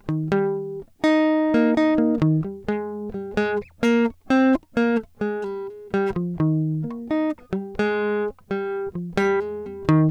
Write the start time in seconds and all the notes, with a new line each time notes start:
0.10 D#3
0.33 G3
1.05 D#4
1.55 A#3
1.74 A#3
1.79 D#4
2.00 A#3
2.23 D#3
2.46 G3
2.70 G#3
3.11 G3
3.39 G#3
3.84 A#3
4.32 C4
4.78 A#3
5.23 G#3
5.44 G3
5.69 G#4
5.95 G3
6.18 F3
6.42 D#3
7.54 G3
7.81 G#3
8.52 G3
8.97 F3
9.19 G3
9.41 G#3
9.68 G3
9.90 D#3